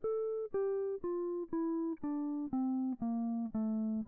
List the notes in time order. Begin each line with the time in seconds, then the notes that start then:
0.05 A4
0.55 G4
1.04 F4
1.53 E4
2.04 D4
2.54 C4
3.03 A#3
3.56 A3